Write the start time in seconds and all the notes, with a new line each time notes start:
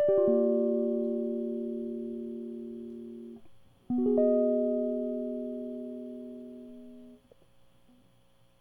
0.00 D5
0.09 G4
0.18 F4
0.28 A#3
3.91 B3
3.98 F#4
4.06 G#4
4.18 D#5